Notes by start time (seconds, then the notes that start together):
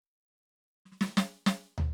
0.85 snare
0.92 snare
0.97 snare, hi-hat pedal
1.17 snare
1.46 snare, hi-hat pedal
1.78 floor tom